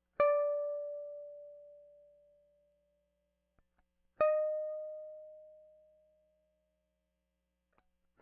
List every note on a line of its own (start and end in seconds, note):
0.20 3.12 D5
4.21 6.71 D#5